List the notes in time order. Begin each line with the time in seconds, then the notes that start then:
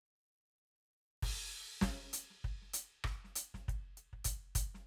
1.23 kick, crash
1.51 closed hi-hat
1.82 kick, snare
2.13 closed hi-hat
2.31 snare
2.44 closed hi-hat, kick
2.62 snare
2.74 closed hi-hat
3.04 kick, cross-stick
3.25 snare
3.36 closed hi-hat
3.54 kick, snare
3.68 kick, closed hi-hat
3.97 closed hi-hat
4.13 kick
4.25 closed hi-hat, kick
4.55 closed hi-hat, kick
4.75 snare